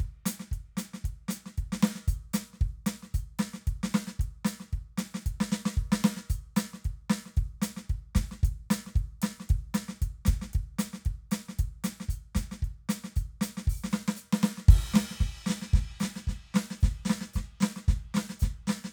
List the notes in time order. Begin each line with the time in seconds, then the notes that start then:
0.01 kick, closed hi-hat
0.27 closed hi-hat, snare
0.41 snare
0.53 kick, closed hi-hat
0.78 closed hi-hat, snare
0.95 snare
1.05 kick, closed hi-hat
1.29 closed hi-hat, snare
1.47 snare
1.59 kick, closed hi-hat
1.73 snare
1.84 snare
1.96 snare
2.09 closed hi-hat, kick
2.35 closed hi-hat, snare
2.54 snare
2.62 kick, closed hi-hat
2.87 snare, closed hi-hat
3.04 snare
3.15 closed hi-hat, kick
3.40 snare, closed hi-hat
3.55 snare
3.68 kick, closed hi-hat
3.84 snare
3.95 snare
4.08 snare
4.20 kick, closed hi-hat
4.46 closed hi-hat, snare
4.61 snare
4.74 kick, closed hi-hat
4.99 snare, closed hi-hat
5.15 snare
5.27 kick, closed hi-hat
5.41 snare
5.53 snare
5.67 snare
5.78 kick
5.93 snare
6.05 snare
6.18 snare
6.31 closed hi-hat, kick
6.57 closed hi-hat, snare
6.74 snare
6.86 kick, closed hi-hat
7.11 snare, closed hi-hat
7.27 snare
7.38 kick, closed hi-hat
7.63 closed hi-hat, snare
7.78 snare
7.91 kick, closed hi-hat
8.16 kick, snare, closed hi-hat
8.32 snare
8.44 kick, closed hi-hat
8.71 closed hi-hat, snare
8.87 snare
8.97 kick, closed hi-hat
9.23 snare, closed hi-hat
9.41 snare
9.50 kick, closed hi-hat
9.75 snare, closed hi-hat
9.89 snare
10.03 kick, closed hi-hat
10.26 kick, snare, closed hi-hat
10.43 snare
10.54 kick, closed hi-hat
10.80 closed hi-hat, snare
10.94 snare
11.06 kick, closed hi-hat
11.32 closed hi-hat, snare
11.50 snare
11.60 kick, closed hi-hat
11.85 closed hi-hat, snare
12.01 snare
12.10 closed hi-hat, kick
12.36 closed hi-hat, kick, snare
12.52 snare
12.63 kick, closed hi-hat
12.90 closed hi-hat, snare
13.05 snare
13.17 closed hi-hat, kick
13.42 closed hi-hat, snare
13.58 snare
13.68 open hi-hat, kick
13.85 snare
13.92 snare, hi-hat pedal
14.09 snare
14.17 hi-hat pedal
14.34 snare
14.44 snare
14.59 snare
14.69 kick, crash
14.95 snare
14.97 snare
15.12 snare
15.21 kick, snare
15.47 snare
15.51 snare
15.63 snare
15.74 kick, snare
16.01 snare, hi-hat pedal
16.04 snare
16.17 snare
16.28 kick, snare
16.55 snare
16.57 snare
16.72 snare
16.82 kick, snare, hi-hat pedal
17.06 snare
17.11 snare
17.22 snare
17.35 kick, snare, hi-hat pedal
17.62 snare
17.64 snare
17.77 snare
17.89 kick, snare
18.15 snare
18.18 snare
18.30 snare
18.41 kick, snare, hi-hat pedal
18.68 snare
18.70 snare
18.85 snare